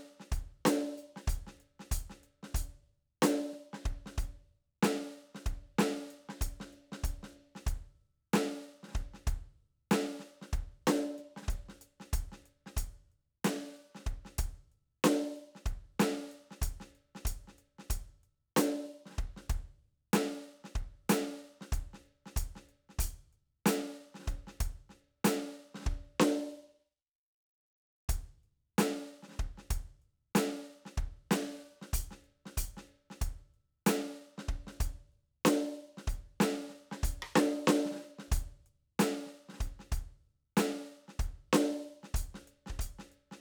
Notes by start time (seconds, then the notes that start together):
0.01 closed hi-hat
0.20 snare
0.32 closed hi-hat, kick
0.66 closed hi-hat, snare
0.96 closed hi-hat, snare
1.16 snare
1.28 closed hi-hat, kick
1.47 snare
1.61 closed hi-hat
1.80 snare
1.92 closed hi-hat, kick
2.10 snare
2.24 closed hi-hat
2.43 snare
2.55 closed hi-hat, kick
3.22 closed hi-hat, snare
3.53 snare, closed hi-hat
3.73 snare
3.86 kick, closed hi-hat
4.06 snare
4.18 closed hi-hat, kick
4.83 closed hi-hat, snare
5.15 closed hi-hat
5.35 snare
5.46 kick, closed hi-hat
5.79 snare, closed hi-hat
6.10 snare, closed hi-hat
6.29 snare
6.41 kick, closed hi-hat
6.60 snare
6.73 closed hi-hat
6.92 snare
7.04 kick, closed hi-hat
7.23 snare
7.34 closed hi-hat
7.55 snare
7.67 kick, closed hi-hat
8.34 snare, closed hi-hat
8.64 snare, closed hi-hat
8.83 snare
8.88 snare
8.91 snare
8.94 kick, snare, closed hi-hat
9.14 snare
9.27 kick, closed hi-hat
9.91 snare, closed hi-hat
10.20 snare, closed hi-hat
10.42 snare
10.53 kick, closed hi-hat
10.87 snare, closed hi-hat
11.18 snare, closed hi-hat
11.37 snare
11.42 snare
11.47 kick, snare, closed hi-hat
11.69 snare
11.82 closed hi-hat
12.00 snare
12.13 kick, closed hi-hat
12.32 snare
12.43 snare, closed hi-hat
12.66 snare
12.77 kick, closed hi-hat
13.12 closed hi-hat
13.45 snare, closed hi-hat
13.77 closed hi-hat
13.95 snare
13.99 snare
14.07 kick, closed hi-hat
14.25 snare
14.39 kick, closed hi-hat
14.72 closed hi-hat
15.04 snare, closed hi-hat
15.36 closed hi-hat
15.55 snare
15.66 kick, closed hi-hat
16.00 snare, closed hi-hat
16.32 closed hi-hat
16.51 snare
16.62 kick, closed hi-hat
16.80 snare
16.95 closed hi-hat
17.15 snare
17.25 kick, closed hi-hat
17.48 snare
17.59 closed hi-hat
17.79 snare
17.90 kick, closed hi-hat
18.24 closed hi-hat
18.57 closed hi-hat, snare
18.85 snare
18.89 closed hi-hat
19.06 snare
19.10 snare
19.13 snare
19.18 kick, closed hi-hat
19.37 snare
19.50 kick, closed hi-hat
20.13 snare, closed hi-hat
20.45 closed hi-hat
20.64 snare
20.76 kick, closed hi-hat
21.10 closed hi-hat, snare
21.41 closed hi-hat
21.61 snare
21.72 kick, closed hi-hat
21.94 snare
22.06 closed hi-hat
22.26 snare
22.37 kick, closed hi-hat
22.56 snare
22.69 closed hi-hat
22.89 snare
22.99 closed hi-hat, kick
23.33 closed hi-hat
23.66 closed hi-hat, snare
24.15 snare
24.19 snare
24.22 snare
24.25 kick, snare
24.28 snare, closed hi-hat
24.47 snare
24.61 kick, closed hi-hat
24.90 snare
25.25 closed hi-hat, snare
25.57 closed hi-hat
25.75 snare
25.79 snare
25.82 snare
25.87 kick
26.20 snare
28.09 kick, closed hi-hat
28.44 closed hi-hat
28.78 closed hi-hat, snare
29.23 snare
29.28 snare
29.31 snare
29.33 snare
29.39 kick, closed hi-hat
29.58 snare
29.71 kick, closed hi-hat
30.02 closed hi-hat
30.35 closed hi-hat, snare
30.67 closed hi-hat
30.86 snare
30.98 kick, closed hi-hat
31.31 closed hi-hat, snare
31.63 closed hi-hat
31.82 snare
31.93 closed hi-hat, kick
32.11 snare
32.24 closed hi-hat
32.46 snare
32.58 closed hi-hat, kick
32.77 snare
32.90 closed hi-hat
33.11 snare
33.22 kick, closed hi-hat
33.54 closed hi-hat
33.87 closed hi-hat, snare
34.18 closed hi-hat
34.38 snare
34.49 kick, closed hi-hat
34.67 snare
34.81 closed hi-hat, kick
35.12 closed hi-hat
35.45 closed hi-hat, snare
35.97 snare
36.08 closed hi-hat, kick
36.40 closed hi-hat, snare
36.70 snare, closed hi-hat
36.92 snare
37.03 closed hi-hat, kick
37.23 cross-stick
37.36 snare
37.68 snare
37.86 snare
37.91 snare
37.99 snare
38.19 snare
38.28 kick
38.32 closed hi-hat, kick
38.66 closed hi-hat
39.00 closed hi-hat, snare
39.27 snare, closed hi-hat
39.49 snare
39.53 snare
39.56 snare
39.61 closed hi-hat, kick, snare
39.80 snare
39.92 closed hi-hat, kick
40.24 closed hi-hat
40.57 closed hi-hat, snare
40.89 closed hi-hat
41.08 snare
41.20 closed hi-hat, kick
41.53 closed hi-hat, snare
41.83 closed hi-hat
42.03 snare
42.14 closed hi-hat, kick
42.35 snare
42.48 closed hi-hat
42.66 kick, snare
42.79 closed hi-hat, kick
42.99 snare
43.12 closed hi-hat
43.32 snare